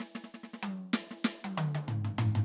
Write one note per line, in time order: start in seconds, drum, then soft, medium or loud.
0.06 snare medium
0.15 snare medium
0.24 snare soft
0.34 snare soft
0.43 snare soft
0.63 high tom loud
0.93 snare loud
1.11 snare medium
1.24 snare loud
1.44 high tom loud
1.58 mid tom loud
1.75 mid tom loud
1.88 floor tom loud
2.05 floor tom loud
2.18 floor tom loud
2.35 floor tom loud